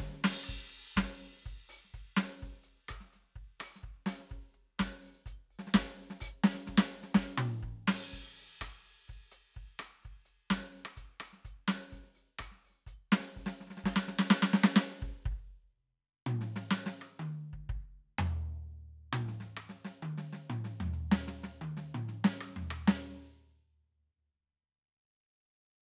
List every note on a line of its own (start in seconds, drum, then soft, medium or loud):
0.01 kick soft
0.25 snare loud
0.25 crash loud
0.34 snare soft
0.44 open hi-hat soft
0.44 cross-stick soft
0.50 kick soft
0.70 open hi-hat soft
0.97 closed hi-hat medium
0.97 kick soft
0.97 snare loud
1.22 open hi-hat soft
1.45 open hi-hat soft
1.45 kick soft
1.70 open hi-hat medium
1.85 snare soft
1.95 closed hi-hat soft
1.95 kick soft
2.17 open hi-hat loud
2.17 snare loud
2.31 snare soft
2.41 open hi-hat soft
2.41 kick soft
2.41 snare soft
2.64 open hi-hat soft
2.89 open hi-hat medium
2.89 kick soft
2.89 cross-stick medium
3.01 snare soft
3.14 open hi-hat soft
3.14 snare soft
3.20 snare soft
3.23 snare soft
3.36 kick soft
3.36 closed hi-hat soft
3.61 open hi-hat medium
3.61 cross-stick medium
3.76 snare soft
3.84 kick soft
3.84 closed hi-hat soft
4.07 open hi-hat loud
4.07 snare medium
4.20 snare soft
4.30 closed hi-hat soft
4.30 kick soft
4.35 snare soft
4.42 snare soft
4.55 open hi-hat soft
4.79 open hi-hat medium
4.79 kick soft
4.79 snare medium
5.04 open hi-hat soft
5.27 closed hi-hat medium
5.27 kick soft
5.51 open hi-hat soft
5.60 snare soft
5.68 snare soft
5.75 kick soft
5.75 snare loud
5.86 snare soft
5.99 open hi-hat soft
6.11 snare soft
6.21 open hi-hat loud
6.21 kick soft
6.45 snare loud
6.55 snare soft
6.68 kick soft
6.68 snare soft
6.78 snare loud
7.04 snare soft
7.15 kick soft
7.15 snare loud
7.15 hi-hat pedal soft
7.29 snare soft
7.38 mid tom loud
7.61 kick soft
7.61 hi-hat pedal soft
7.69 kick soft
7.88 snare loud
7.88 crash medium
8.14 kick soft
8.37 open hi-hat soft
8.62 closed hi-hat loud
8.62 kick soft
8.62 cross-stick medium
8.87 open hi-hat soft
9.08 open hi-hat soft
9.08 kick soft
9.32 open hi-hat medium
9.55 kick soft
9.55 closed hi-hat soft
9.80 open hi-hat medium
9.80 cross-stick medium
10.04 open hi-hat soft
10.04 kick soft
10.26 open hi-hat soft
10.51 open hi-hat medium
10.51 kick soft
10.51 snare loud
10.61 snare soft
10.75 open hi-hat soft
10.86 cross-stick medium
10.98 closed hi-hat medium
10.98 kick soft
11.21 open hi-hat medium
11.21 cross-stick medium
11.34 snare soft
11.46 closed hi-hat soft
11.46 kick soft
11.69 open hi-hat medium
11.69 snare loud
11.78 snare soft
11.92 open hi-hat soft
11.92 kick soft
12.04 snare soft
12.07 snare soft
12.15 open hi-hat soft
12.40 open hi-hat medium
12.40 kick soft
12.40 cross-stick medium
12.52 snare soft
12.65 open hi-hat soft
12.71 snare soft
12.87 closed hi-hat soft
12.87 kick soft
13.13 open hi-hat medium
13.13 snare loud
13.21 snare soft
13.37 open hi-hat soft
13.37 kick soft
13.47 snare medium
13.61 snare soft
13.68 snare soft
13.71 snare soft
13.78 snare soft
13.85 kick soft
13.85 snare medium
13.97 snare loud
14.09 snare medium
14.19 snare loud
14.31 snare loud
14.43 snare loud
14.54 snare loud
14.64 snare loud
14.77 snare loud
15.03 kick soft
15.08 kick soft
15.26 kick medium
15.33 kick soft
15.37 kick soft
16.27 mid tom loud
16.42 snare soft
16.57 snare medium
16.72 snare loud
16.87 snare medium
17.02 cross-stick medium
17.20 high tom medium
17.54 kick soft
17.70 kick soft
18.19 floor tom loud
19.14 mid tom loud
19.29 snare soft
19.41 snare soft
19.58 cross-stick medium
19.70 snare soft
19.86 snare medium
20.03 high tom medium
20.18 snare soft
20.34 snare soft
20.51 mid tom loud
20.65 snare soft
20.81 floor tom loud
20.94 snare soft
21.12 snare loud
21.28 snare medium
21.44 snare medium
21.62 high tom medium
21.78 snare soft
21.95 mid tom loud
22.09 snare soft
22.25 snare loud
22.41 cross-stick medium
22.57 floor tom medium
22.71 cross-stick medium
22.88 snare loud